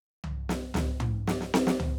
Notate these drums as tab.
Snare     |----o-o---oooo--|
Mid tom   |--------o-------|
Floor tom |--o---o-------o-|